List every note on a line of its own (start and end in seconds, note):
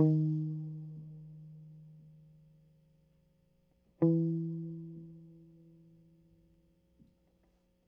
0.00 3.50 D#3
4.03 6.81 E3